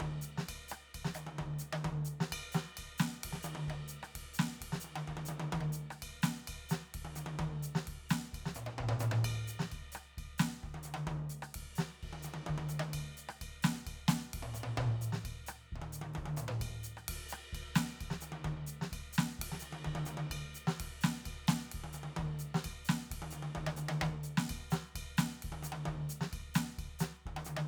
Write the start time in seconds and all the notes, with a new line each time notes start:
0.01 kick, high tom
0.22 hi-hat pedal
0.38 snare
0.49 kick, ride bell
0.69 cross-stick, hi-hat pedal
0.95 kick, ride bell
1.05 snare
1.15 hi-hat pedal, high tom
1.27 high tom
1.39 kick, high tom
1.59 hi-hat pedal, high tom
1.73 high tom
1.85 kick, high tom
2.06 hi-hat pedal
2.21 snare
2.33 kick, ride bell
2.53 snare, hi-hat pedal
2.78 kick, ride bell
2.84 kick
2.99 snare, hi-hat pedal
3.24 kick, ride
3.33 snare
3.44 hi-hat pedal, high tom
3.56 high tom
3.68 kick, high tom
3.89 hi-hat pedal
4.04 cross-stick
4.16 kick, ride
4.34 hi-hat pedal
4.40 snare
4.62 kick, ride
4.73 snare
4.81 hi-hat pedal
4.85 high tom
4.96 high tom
5.08 kick, high tom
5.18 high tom
5.26 hi-hat pedal, high tom
5.40 high tom
5.53 kick, high tom
5.61 high tom
5.73 hi-hat pedal
5.91 cross-stick
6.03 kick, ride bell
6.23 snare, hi-hat pedal
6.48 kick, ride bell
6.70 snare, hi-hat pedal
6.95 kick, ride
7.05 high tom
7.16 hi-hat pedal, high tom
7.27 high tom
7.40 kick, high tom
7.63 hi-hat pedal
7.76 snare
7.88 kick, ride
8.10 snare, hi-hat pedal
8.34 kick, ride bell
8.46 snare
8.55 hi-hat pedal, mid tom
8.67 mid tom
8.79 kick, mid tom
8.89 mid tom
9.00 hi-hat pedal, mid tom
9.12 mid tom
9.24 kick, ride bell
9.48 hi-hat pedal
9.60 snare
9.72 kick, ride bell
9.79 kick
9.93 cross-stick, hi-hat pedal
10.18 kick, ride bell
10.39 snare, hi-hat pedal
10.64 kick, high tom
10.75 high tom
10.84 hi-hat pedal, high tom
10.95 high tom
11.08 kick, high tom
11.30 hi-hat pedal
11.43 cross-stick
11.55 kick, ride
11.76 snare, hi-hat pedal
12.04 kick, ride
12.14 high tom
12.23 hi-hat pedal, high tom
12.35 high tom
12.47 kick, high tom
12.59 high tom
12.70 hi-hat pedal, high tom
12.80 high tom
12.94 kick, ride bell
13.18 hi-hat pedal
13.30 cross-stick
13.42 kick, ride bell
13.63 snare, hi-hat pedal
13.73 snare
13.87 kick, ride bell
14.09 snare, hi-hat pedal
14.34 kick, ride
14.40 kick, mid tom
14.55 hi-hat pedal, mid tom
14.64 mid tom
14.78 kick, mid tom
14.88 mid tom
15.02 hi-hat pedal
15.13 snare
15.25 kick, ride bell
15.47 cross-stick, hi-hat pedal
15.73 kick, mid tom
15.82 high tom
15.93 hi-hat pedal
16.02 high tom
16.15 high tom, crash
16.19 kick
16.26 high tom
16.37 hi-hat pedal, mid tom
16.49 mid tom
16.61 kick, ride bell
16.84 hi-hat pedal
16.98 cross-stick
17.09 kick, ride
17.15 kick
17.30 cross-stick, hi-hat pedal
17.54 kick, ride bell
17.76 snare, hi-hat pedal
18.01 kick, ride bell
18.11 snare
18.21 hi-hat pedal, high tom
18.33 high tom
18.45 kick, high tom
18.67 hi-hat pedal
18.82 snare
18.93 kick, ride bell
19.00 kick
19.14 hi-hat pedal
19.19 snare
19.40 kick, ride
19.52 snare
19.60 hi-hat pedal, high tom
19.73 high tom
19.85 kick, high tom
19.93 kick, high tom
20.06 hi-hat pedal, high tom
20.18 high tom
20.31 kick, ride bell
20.54 hi-hat pedal, ride
20.68 snare
20.81 kick, ride
21.02 snare, hi-hat pedal
21.26 kick, ride bell
21.34 kick
21.48 snare, hi-hat pedal
21.72 kick, ride
21.85 high tom
21.94 hi-hat pedal, high tom
22.04 high tom
22.17 kick, high tom
22.40 hi-hat pedal
22.55 snare
22.65 kick, ride bell
22.85 hi-hat pedal
22.90 snare
23.12 kick, ride
23.17 kick
23.23 high tom
23.31 hi-hat pedal, high tom
23.43 high tom
23.56 kick, high tom
23.67 high tom
23.77 hi-hat pedal, high tom
23.89 high tom
24.02 kick, high tom
24.24 hi-hat pedal
24.38 snare
24.50 kick, ride bell
24.71 snare, hi-hat pedal
24.96 kick, ride bell
25.18 snare, hi-hat pedal
25.43 kick, ride
25.53 high tom
25.63 hi-hat pedal, high tom
25.73 high tom
25.86 kick, high tom
26.10 hi-hat pedal
26.22 snare
26.34 kick, ride bell
26.55 snare, hi-hat pedal
26.79 kick, ride bell
27.00 snare, hi-hat pedal
27.27 kick, high tom
27.37 high tom
27.45 hi-hat pedal, high tom
27.57 high tom